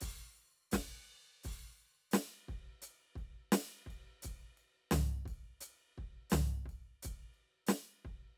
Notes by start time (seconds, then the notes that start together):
0.01 kick, hi-hat pedal, crash
0.36 ride
0.72 kick, snare, hi-hat pedal, crash
1.10 ride
1.44 kick, hi-hat pedal, crash
2.11 snare, hi-hat pedal, ride
2.49 kick, ride
2.82 hi-hat pedal, ride
3.16 kick, ride
3.52 snare, hi-hat pedal, ride
3.86 kick
3.91 ride
4.22 kick, hi-hat pedal, ride
4.57 ride
4.91 snare, floor tom, hi-hat pedal
5.26 kick, ride
5.61 hi-hat pedal, ride
5.96 kick, ride
6.30 snare, floor tom, hi-hat pedal
6.66 kick, ride
7.03 kick, hi-hat pedal, ride
7.34 ride
7.67 snare, hi-hat pedal, ride
8.05 kick